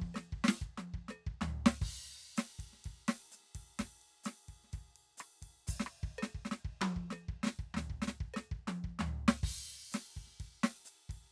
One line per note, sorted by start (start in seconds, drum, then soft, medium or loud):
0.02 kick soft
0.15 snare medium
0.15 percussion medium
0.33 kick soft
0.38 kick soft
0.44 snare medium
0.49 snare loud
0.62 kick soft
0.78 snare soft
0.78 high tom medium
0.94 kick soft
1.09 snare soft
1.09 percussion medium
1.27 kick soft
1.41 snare medium
1.41 floor tom medium
1.66 snare loud
1.82 kick medium
1.82 crash medium
2.37 snare medium
2.37 hi-hat pedal loud
2.37 ride medium
2.59 kick soft
2.59 ride medium
2.73 snare soft
2.78 snare soft
2.82 kick soft
2.82 snare soft
2.82 ride soft
3.09 snare medium
3.09 ride medium
3.32 snare soft
3.32 hi-hat pedal medium
3.40 snare soft
3.43 snare soft
3.55 kick soft
3.55 ride medium
3.79 kick soft
3.79 snare medium
3.79 hi-hat pedal soft
3.79 ride medium
3.85 kick soft
4.02 ride soft
4.24 snare medium
4.24 hi-hat pedal medium
4.24 ride medium
4.49 kick soft
4.49 ride soft
4.64 snare soft
4.69 snare soft
4.72 kick soft
4.72 snare soft
4.72 hi-hat pedal soft
4.72 ride soft
4.96 ride soft
5.18 cross-stick medium
5.18 hi-hat pedal medium
5.18 ride medium
5.42 kick soft
5.42 ride medium
5.67 kick soft
5.67 hi-hat pedal loud
5.75 kick soft
5.80 snare medium
5.87 cross-stick medium
6.03 kick soft
6.10 kick soft
6.19 percussion medium
6.23 snare medium
6.35 kick soft
6.45 snare medium
6.52 snare medium
6.65 kick soft
6.81 snare medium
6.81 high tom loud
6.96 kick soft
7.11 snare soft
7.11 percussion medium
7.29 kick soft
7.44 snare medium
7.47 snare medium
7.59 kick soft
7.75 snare medium
7.75 floor tom medium
7.90 kick soft
8.02 snare medium
8.08 snare medium
8.21 kick soft
8.34 snare medium
8.34 percussion medium
8.52 kick soft
8.68 snare medium
8.68 high tom medium
8.84 kick soft
8.90 kick soft
8.99 snare medium
8.99 floor tom medium
9.28 snare loud
9.43 kick medium
9.43 crash medium
9.92 snare medium
9.92 hi-hat pedal medium
9.92 ride medium
10.16 kick soft
10.16 ride soft
10.27 snare soft
10.32 snare soft
10.38 kick soft
10.38 hi-hat pedal soft
10.38 ride soft
10.64 snare medium
10.64 ride medium
10.85 hi-hat pedal medium
10.85 ride soft
11.10 kick soft
11.10 ride soft
11.15 kick soft